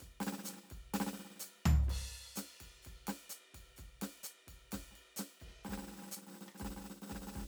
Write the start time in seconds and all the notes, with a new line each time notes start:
0.01 kick, ride
0.07 kick
0.21 snare, ride
0.27 snare
0.33 snare
0.39 snare
0.44 snare, hi-hat pedal, ride
0.49 snare
0.53 snare
0.57 snare
0.64 snare
0.67 snare, ride
0.71 kick, snare
0.77 kick
0.94 kick, snare, ride
1.01 snare
1.07 snare
1.14 snare
1.18 snare, ride
1.25 snare
1.31 snare
1.36 snare, hi-hat pedal
1.41 snare
1.45 snare, ride
1.49 snare
1.52 snare
1.55 snare
1.58 snare
1.66 kick, floor tom
1.72 kick
1.83 hi-hat pedal
1.89 kick, crash
1.94 kick
2.36 snare, hi-hat pedal, ride
2.61 kick, snare, ride
2.66 kick
2.83 hi-hat pedal, ride
2.87 kick
3.08 snare, ride
3.30 hi-hat pedal, ride
3.55 kick, ride
3.60 kick
3.77 kick, hi-hat pedal, ride
3.84 kick
4.02 snare, ride
4.24 hi-hat pedal, ride
4.48 kick, ride
4.53 kick
4.71 kick, snare, hi-hat pedal, ride
4.79 kick
4.92 snare
4.96 ride
5.17 snare, hi-hat pedal, ride
5.41 kick, ride
5.47 kick, snare
5.64 snare, hi-hat pedal
5.69 kick, snare
5.73 kick, snare
5.78 snare
5.83 snare
5.88 snare
5.92 snare
5.96 snare
5.98 snare
6.00 snare
6.03 snare
6.07 snare
6.11 snare, hi-hat pedal
6.22 snare
6.31 snare
6.34 snare
6.36 snare
6.41 snare
6.47 cross-stick, snare
6.52 cross-stick, snare
6.58 snare, hi-hat pedal
6.60 kick, snare
6.68 kick, snare
6.77 snare
6.81 snare
6.85 snare
6.90 snare
6.96 snare
7.03 snare
7.07 snare
7.10 kick, snare
7.15 kick, snare
7.21 snare
7.28 snare
7.32 kick, snare, hi-hat pedal
7.36 snare
7.39 kick, snare
7.42 snare